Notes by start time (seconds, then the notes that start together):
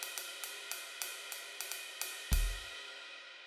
0.03 ride
0.18 ride
0.44 ride
0.72 ride
1.02 ride
1.33 ride
1.61 ride
1.72 ride
2.02 ride
2.32 kick, ride